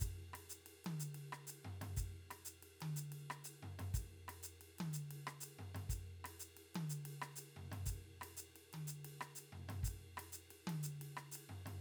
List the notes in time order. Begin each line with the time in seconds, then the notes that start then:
0.01 kick, hi-hat pedal, ride
0.34 cross-stick, ride
0.50 hi-hat pedal
0.67 ride
0.85 high tom, ride
1.01 hi-hat pedal
1.15 ride
1.33 cross-stick
1.48 hi-hat pedal, ride
1.65 floor tom
1.82 floor tom, ride
1.97 kick, hi-hat pedal, ride
2.31 cross-stick, ride
2.46 hi-hat pedal
2.64 ride
2.81 high tom, ride
2.97 hi-hat pedal
3.13 ride
3.18 hi-hat pedal
3.31 cross-stick
3.45 hi-hat pedal, ride
3.63 floor tom
3.80 floor tom, ride
3.95 kick, hi-hat pedal, ride
4.29 cross-stick, ride
4.44 hi-hat pedal
4.62 ride
4.79 high tom, ride
4.94 hi-hat pedal
5.12 ride
5.28 cross-stick
5.41 hi-hat pedal, ride
5.60 floor tom
5.75 floor tom, ride
5.90 kick, hi-hat pedal, ride
6.25 cross-stick, ride
6.40 hi-hat pedal
6.58 ride
6.76 high tom, ride
6.90 hi-hat pedal
7.06 ride
7.11 hi-hat pedal
7.22 cross-stick
7.37 hi-hat pedal, ride
7.57 floor tom
7.72 floor tom, ride
7.87 kick, hi-hat pedal, ride
8.22 cross-stick, ride
8.38 hi-hat pedal
8.57 ride
8.74 high tom, ride
8.88 hi-hat pedal
9.05 ride
9.22 cross-stick
9.36 hi-hat pedal, ride
9.53 floor tom
9.70 floor tom, ride
9.84 kick, hi-hat pedal
9.89 ride
10.18 cross-stick, ride
10.33 hi-hat pedal
10.51 ride
10.68 high tom, ride
10.84 hi-hat pedal
11.02 ride
11.18 cross-stick
11.32 hi-hat pedal, ride
11.50 floor tom
11.67 floor tom, ride